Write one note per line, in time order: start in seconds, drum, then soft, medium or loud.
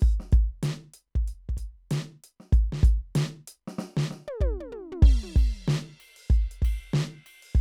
0.01 open hi-hat medium
0.01 kick medium
0.20 snare soft
0.32 closed hi-hat soft
0.32 kick loud
0.63 closed hi-hat medium
0.63 snare loud
0.94 closed hi-hat medium
1.16 kick medium
1.28 closed hi-hat medium
1.49 kick medium
1.57 closed hi-hat medium
1.57 kick soft
1.91 closed hi-hat medium
1.91 snare loud
2.24 closed hi-hat medium
2.40 snare soft
2.53 kick loud
2.53 closed hi-hat soft
2.73 snare medium
2.83 closed hi-hat medium
2.83 kick loud
3.15 closed hi-hat loud
3.15 snare loud
3.48 closed hi-hat loud
3.68 snare medium
3.79 snare medium
3.97 snare loud
4.11 snare soft
4.11 hi-hat pedal soft
4.28 high tom loud
4.41 kick medium
4.41 high tom loud
4.60 high tom medium
4.72 mid tom medium
4.92 floor tom medium
5.03 kick loud
5.03 crash medium
5.23 floor tom medium
5.36 kick medium
5.36 ride bell soft
5.68 snare loud
5.68 hi-hat pedal medium
6.00 ride bell soft
6.17 open hi-hat medium
6.30 kick medium
6.51 closed hi-hat medium
6.62 kick medium
6.62 ride bell medium
6.94 snare loud
7.26 ride bell medium
7.43 open hi-hat medium
7.55 kick medium